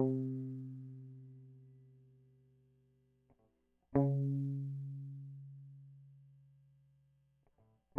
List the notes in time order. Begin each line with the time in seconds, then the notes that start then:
0.00 C3
3.96 C#3